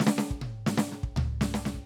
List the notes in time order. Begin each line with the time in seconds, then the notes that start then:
0.00 snare
0.07 snare
0.18 snare
0.31 kick
0.42 high tom
0.67 snare
0.78 snare
0.92 snare
1.03 kick
1.16 floor tom, high tom
1.41 snare
1.54 snare
1.65 snare
1.74 kick